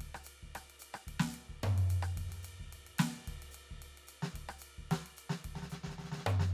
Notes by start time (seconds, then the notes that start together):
0.01 kick, ride
0.16 cross-stick
0.25 hi-hat pedal, ride
0.44 kick
0.56 cross-stick, ride
0.71 ride
0.81 hi-hat pedal, ride
0.95 cross-stick
1.08 kick, ride
1.21 snare
1.31 hi-hat pedal, ride
1.51 kick
1.65 floor tom, ride
1.79 ride
1.91 hi-hat pedal, ride
2.04 cross-stick
2.18 kick, ride
2.30 snare, ride
2.35 snare
2.39 snare
2.43 snare, hi-hat pedal, ride
2.61 kick
2.74 ride
2.88 ride
3.00 snare, hi-hat pedal, ride
3.29 kick, snare, ride
3.44 snare, ride
3.52 hi-hat pedal, ride
3.72 kick
3.83 ride
3.99 ride
4.08 hi-hat pedal, ride
4.24 snare
4.36 kick, ride
4.50 cross-stick
4.60 hi-hat pedal, ride
4.80 kick
4.92 snare, ride
5.07 ride
5.18 hi-hat pedal, ride
5.31 snare
5.46 kick, ride
5.57 snare
5.64 snare
5.71 snare, hi-hat pedal
5.85 kick, snare
5.91 snare
6.00 snare
6.05 snare
6.12 snare
6.19 snare
6.28 hi-hat pedal, floor tom
6.41 snare